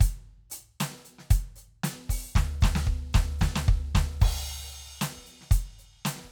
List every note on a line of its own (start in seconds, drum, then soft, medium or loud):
0.01 open hi-hat loud
0.01 kick loud
0.50 closed hi-hat loud
0.50 hi-hat pedal medium
0.80 closed hi-hat loud
0.80 snare loud
0.92 snare soft
0.95 snare soft
0.98 snare soft
1.02 closed hi-hat medium
1.02 snare soft
1.19 snare medium
1.31 closed hi-hat loud
1.31 kick loud
1.56 closed hi-hat medium
1.56 hi-hat pedal medium
1.84 closed hi-hat loud
1.84 snare loud
2.01 snare soft
2.09 open hi-hat loud
2.09 kick medium
2.09 hi-hat pedal soft
2.36 kick loud
2.36 snare loud
2.36 floor tom loud
2.36 hi-hat pedal medium
2.61 kick loud
2.61 snare loud
2.61 floor tom loud
2.61 hi-hat pedal medium
2.76 snare loud
2.85 kick medium
2.85 hi-hat pedal medium
3.13 kick loud
3.13 snare loud
3.13 floor tom loud
3.13 hi-hat pedal medium
3.39 kick medium
3.39 snare loud
3.39 floor tom loud
3.39 hi-hat pedal medium
3.56 snare loud
3.68 kick loud
3.95 kick loud
3.95 snare loud
3.95 floor tom loud
4.18 kick soft
4.18 hi-hat pedal medium
4.22 kick loud
4.22 crash loud
4.70 hi-hat pedal soft
5.01 closed hi-hat loud
5.01 snare loud
5.18 kick soft
5.27 closed hi-hat soft
5.41 snare soft
5.51 open hi-hat loud
5.51 kick loud
5.79 hi-hat pedal medium
6.05 closed hi-hat loud
6.05 snare loud
6.16 snare medium
6.20 snare soft
6.23 kick soft
6.23 snare soft